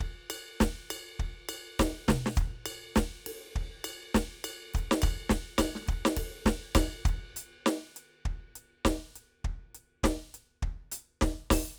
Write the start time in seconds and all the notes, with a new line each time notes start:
0.01 kick, ride
0.29 kick, ride bell
0.61 kick, snare, hi-hat pedal
0.85 kick
0.91 ride bell
1.20 kick, ride
1.42 kick
1.49 ride bell
1.80 kick, snare, hi-hat pedal, ride
2.09 kick, snare, mid tom
2.26 snare
2.36 kick, hi-hat pedal
2.66 ride bell
2.96 kick, snare, hi-hat pedal
3.18 kick
3.27 ride
3.56 kick
3.79 kick
3.85 ride bell
4.15 kick, snare, hi-hat pedal, ride
4.45 ride bell
4.74 kick, hi-hat pedal, ride
4.92 snare
5.02 kick, ride bell
5.30 kick, snare
5.59 kick, snare, ride bell
5.76 snare
5.82 snare
5.86 kick, snare, ride
6.06 snare
6.17 kick, ride
6.46 kick, snare
6.75 kick, snare, ride bell
7.06 kick, hi-hat pedal
7.37 closed hi-hat
7.67 snare
7.97 closed hi-hat
8.26 kick, crash
8.56 closed hi-hat
8.85 kick, snare
9.16 closed hi-hat
9.45 kick
9.75 closed hi-hat
10.04 kick, snare
10.35 closed hi-hat
10.63 kick, ride
10.92 closed hi-hat
11.22 kick, snare
11.51 open hi-hat, kick, snare